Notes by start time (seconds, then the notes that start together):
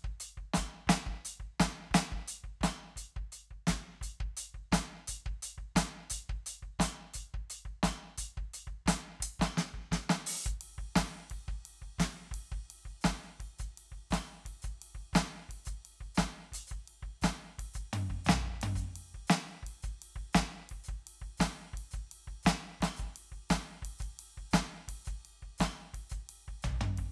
0.01 kick, snare
0.05 snare
0.20 closed hi-hat
0.37 kick
0.54 closed hi-hat, kick, snare
0.87 closed hi-hat, kick, snare
1.07 kick
1.25 closed hi-hat
1.40 kick
1.60 closed hi-hat, kick, snare
1.91 closed hi-hat, kick, snare
2.12 kick
2.28 closed hi-hat
2.44 kick
2.61 closed hi-hat, kick, snare
2.96 closed hi-hat, kick
3.17 kick
3.32 closed hi-hat
3.51 kick
3.67 closed hi-hat, kick, snare
4.02 closed hi-hat, kick
4.21 kick
4.37 closed hi-hat
4.55 kick
4.72 closed hi-hat, kick, snare
5.08 closed hi-hat, kick
5.26 kick
5.43 closed hi-hat
5.58 kick
5.76 closed hi-hat, kick, snare
6.10 closed hi-hat, kick
6.30 kick
6.46 closed hi-hat
6.63 kick
6.79 closed hi-hat, kick, snare
6.97 cross-stick
7.14 closed hi-hat, kick
7.34 kick
7.50 closed hi-hat
7.65 kick
7.83 closed hi-hat, kick, snare
8.03 snare
8.18 closed hi-hat, kick
8.37 kick
8.54 closed hi-hat
8.67 kick
8.86 closed hi-hat, kick, snare
9.06 snare
9.20 kick, closed hi-hat
9.40 kick, snare
9.58 snare
9.74 kick
9.92 kick, snare
10.10 snare
10.27 open hi-hat
10.45 kick, hi-hat pedal
10.61 ride
10.78 kick
10.96 kick, snare, ride
11.11 snare
11.30 kick, ride
11.47 kick, snare
11.66 ride
11.82 kick
11.99 kick, snare, ride
12.15 snare
12.32 kick, ride
12.52 kick
12.71 ride
12.85 kick
13.02 kick, snare, hi-hat pedal
13.07 ride
13.23 snare
13.40 kick, ride
13.59 kick, hi-hat pedal
13.78 ride
13.92 kick
14.11 kick, snare, hi-hat pedal, ride
14.46 kick, ride
14.62 kick, hi-hat pedal
14.82 ride
14.95 kick
15.13 kick, snare, hi-hat pedal, ride
15.49 kick, ride
15.66 kick, hi-hat pedal
15.85 ride
16.01 kick
16.15 kick, snare, hi-hat pedal
16.19 ride
16.52 closed hi-hat, kick, ride
16.67 hi-hat pedal
16.71 kick
16.88 ride
17.03 kick
17.22 kick, snare, hi-hat pedal, ride
17.59 kick, ride
17.74 kick, hi-hat pedal
17.93 high tom, ride
18.10 kick
18.25 floor tom, hi-hat pedal
18.29 snare
18.62 high tom, ride
18.76 kick, hi-hat pedal
18.96 ride
19.15 kick
19.27 snare, hi-hat pedal
19.32 ride
19.63 kick
19.67 ride
19.83 kick, hi-hat pedal
20.02 ride
20.16 kick
20.33 kick, snare, hi-hat pedal, ride
20.70 kick, ride
20.84 hi-hat pedal
20.89 kick
21.07 ride
21.22 kick
21.38 kick, snare, hi-hat pedal
21.42 ride
21.74 kick
21.78 ride
21.91 kick, hi-hat pedal
22.12 ride
22.28 kick
22.43 kick, snare, hi-hat pedal
22.47 ride
22.81 kick, snare, ride
22.97 kick, hi-hat pedal
23.16 ride
23.32 kick
23.50 kick, snare, hi-hat pedal, ride
23.82 kick, ride
23.99 kick, hi-hat pedal, ride
24.19 ride
24.38 kick
24.51 kick, snare, hi-hat pedal, ride
24.88 kick, ride
25.05 kick, hi-hat pedal
25.25 ride
25.43 kick
25.58 kick, snare, hi-hat pedal, ride
25.94 kick, ride
26.10 kick, hi-hat pedal
26.29 ride
26.48 kick
26.63 kick, floor tom, hi-hat pedal
26.81 hi-hat pedal, high tom
26.98 kick, ride